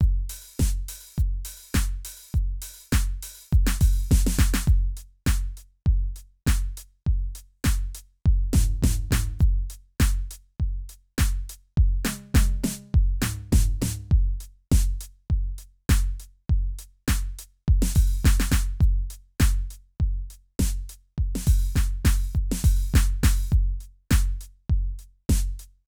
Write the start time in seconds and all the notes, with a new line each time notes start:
0.01 kick, hi-hat pedal
0.30 open hi-hat
0.60 kick, snare, hi-hat pedal
0.89 open hi-hat
1.18 kick, hi-hat pedal
1.45 open hi-hat
1.74 kick, snare, hi-hat pedal
2.05 open hi-hat
2.34 kick, hi-hat pedal
2.62 open hi-hat
2.92 kick, snare, hi-hat pedal
3.23 open hi-hat
3.52 kick, hi-hat pedal
3.67 snare
3.81 open hi-hat, kick
4.12 kick, snare
4.27 snare
4.39 kick, snare
4.54 snare
4.67 kick, hi-hat pedal
4.97 closed hi-hat
5.27 kick, snare
5.58 closed hi-hat
5.87 kick
6.17 closed hi-hat
6.47 kick, snare
6.78 closed hi-hat
7.07 kick, crash
7.36 closed hi-hat
7.65 kick, snare
7.95 closed hi-hat
8.26 kick
8.54 kick, snare, floor tom
8.83 kick, snare, floor tom
9.12 kick, snare, floor tom
9.40 kick, hi-hat pedal
9.70 closed hi-hat
10.00 kick, snare
10.31 closed hi-hat
10.60 kick
10.90 closed hi-hat
11.19 kick, snare
11.50 closed hi-hat
11.78 kick
12.05 snare, mid tom
12.35 kick, snare, mid tom
12.64 snare, mid tom
12.95 kick
13.22 snare, floor tom
13.53 kick, snare, floor tom
13.82 snare, floor tom
14.12 kick
14.41 closed hi-hat
14.72 kick, snare
15.01 closed hi-hat
15.31 kick
15.59 closed hi-hat
15.90 kick, snare
16.20 closed hi-hat
16.50 kick, ride
16.79 closed hi-hat
17.08 kick, snare
17.39 closed hi-hat
17.69 kick
17.83 snare
17.96 open hi-hat, kick
18.25 kick, snare
18.40 snare
18.52 kick, snare
18.81 kick, hi-hat pedal
19.11 closed hi-hat
19.40 kick, snare
19.71 closed hi-hat
20.01 kick
20.31 closed hi-hat
20.60 kick, snare
20.90 closed hi-hat
21.19 kick
21.36 snare
21.47 open hi-hat, kick
21.75 kick, snare, hi-hat pedal
22.05 open hi-hat, kick, snare
22.34 kick, hi-hat pedal
22.52 snare
22.65 open hi-hat, kick
22.94 kick, snare, hi-hat pedal
23.24 open hi-hat, kick, snare
23.51 kick, hi-hat pedal
23.81 closed hi-hat
24.11 kick, snare
24.41 closed hi-hat
24.70 kick
25.00 closed hi-hat
25.30 kick, snare
25.60 closed hi-hat